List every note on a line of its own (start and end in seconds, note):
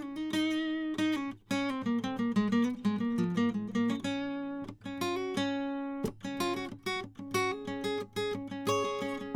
0.00 0.17 C#4
0.17 0.33 D#4
0.34 0.96 D#4
0.99 1.14 D#4
1.14 1.37 C#4
1.51 1.88 C#4
1.87 2.02 A#3
2.04 2.25 C4
2.20 2.34 A#3
2.37 2.49 G#3
2.53 2.80 B3
2.85 2.99 G#3
3.02 3.28 A#3
3.19 3.40 F3
3.38 3.52 A#3
3.56 3.72 G#3
3.76 4.01 A#3
3.90 4.00 C#4
4.05 4.67 C#4
4.69 4.77 C#4
4.87 5.36 C#4
5.02 5.16 F4
5.16 5.39 F#4
5.38 6.06 C#4
6.06 6.16 C#4
6.25 6.70 C#4
6.41 6.54 F4
6.54 6.71 F#4
6.73 6.83 C#4
6.87 7.08 F#4
7.05 7.18 C#4
7.20 7.67 C#4
7.35 7.52 F#4
7.52 7.84 G#4
7.68 7.99 C#4
7.85 8.07 G#4
7.99 8.09 C#4
8.17 8.33 C#4
8.17 8.39 G#4
8.36 8.50 C#4
8.52 8.87 C#4
8.68 8.83 G#4
8.68 9.20 C#5
8.83 9.01 G#4
9.02 9.18 C#4
9.02 9.35 G#4
9.19 9.35 C#4